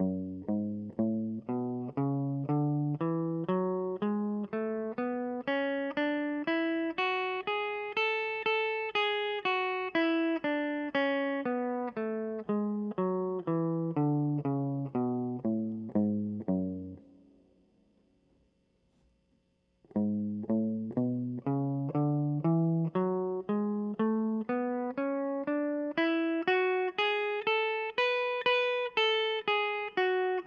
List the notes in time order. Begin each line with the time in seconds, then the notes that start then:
0.03 F#2
0.51 G#2
1.01 A2
1.51 B2
1.99 C#3
2.51 D3
3.02 E3
3.50 F#3
4.03 G#3
4.54 A3
4.99 B3
5.48 C#4
5.98 D4
6.48 E4
6.99 F#4
7.48 G#4
7.98 A4
8.47 A4
8.96 G#4
9.46 F#4
9.96 E4
10.45 D4
10.96 C#4
11.47 B3
11.98 A3
12.50 G#3
12.99 F#3
13.49 E3
14.01 D3
14.47 C#3
14.97 B2
15.47 A2
15.97 G#2
16.51 F#2
19.98 G#2
20.52 A2
20.99 B2
21.48 C#3
21.96 D3
22.46 E3
22.97 F#3
23.50 G#3
24.01 A3
24.50 B3
24.99 C#4
25.48 D4
25.98 E4
26.48 F#4
26.99 G#4
27.48 A4
27.99 B4
28.47 B4
28.98 A4
29.48 G#4
29.98 F#4